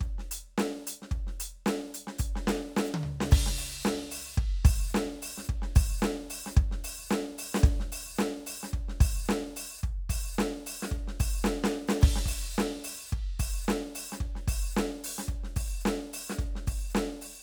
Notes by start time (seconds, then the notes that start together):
0.01 kick, closed hi-hat
0.19 snare
0.31 closed hi-hat
0.58 snare
0.87 closed hi-hat
1.02 snare
1.11 kick, closed hi-hat
1.27 snare
1.40 closed hi-hat
1.66 snare
1.95 closed hi-hat
2.07 snare
2.19 closed hi-hat, kick
2.36 snare
2.48 snare
2.77 snare
2.85 hi-hat pedal
2.94 high tom
3.04 floor tom
3.21 snare
3.32 kick, crash
3.47 snare
3.58 open hi-hat
3.82 snare, hi-hat pedal
4.12 open hi-hat
4.34 kick, hi-hat pedal
4.65 open hi-hat, kick
4.90 hi-hat pedal
4.95 snare
5.22 open hi-hat
5.38 snare
5.45 closed hi-hat, hi-hat pedal
5.49 kick
5.62 snare
5.76 open hi-hat, kick
6.00 snare, hi-hat pedal
6.30 open hi-hat
6.46 snare
6.52 hi-hat pedal
6.57 kick, closed hi-hat
6.72 snare
6.84 open hi-hat
7.09 snare, hi-hat pedal
7.39 open hi-hat
7.55 snare, hi-hat pedal
7.64 kick, closed hi-hat
7.80 snare
7.92 open hi-hat
8.16 snare, hi-hat pedal
8.47 open hi-hat
8.63 snare
8.68 hi-hat pedal
8.74 kick, closed hi-hat
8.89 snare
9.01 open hi-hat, kick
9.26 snare, hi-hat pedal
9.57 open hi-hat
9.79 closed hi-hat, hi-hat pedal
9.84 kick
10.10 open hi-hat, kick
10.35 hi-hat pedal
10.39 snare
10.67 open hi-hat
10.83 snare
10.87 hi-hat pedal
10.92 kick, closed hi-hat
11.08 snare
11.20 open hi-hat, kick
11.42 snare, hi-hat pedal
11.64 snare
11.88 snare, hi-hat pedal
12.02 kick, crash
12.16 snare
12.26 open hi-hat, kick
12.55 snare, hi-hat pedal
12.84 open hi-hat
13.10 kick, hi-hat pedal
13.40 open hi-hat, kick
13.65 snare, hi-hat pedal
13.95 open hi-hat
14.12 snare, hi-hat pedal
14.21 kick
14.36 snare
14.48 open hi-hat, kick
14.73 hi-hat pedal
14.77 snare
15.04 open hi-hat
15.19 snare
15.26 closed hi-hat, kick, hi-hat pedal
15.44 snare
15.56 open hi-hat, kick
15.81 hi-hat pedal
15.86 snare
16.14 open hi-hat
16.30 snare, hi-hat pedal
16.39 closed hi-hat, kick
16.56 snare
16.67 open hi-hat, kick
16.90 hi-hat pedal
16.95 snare
17.22 open hi-hat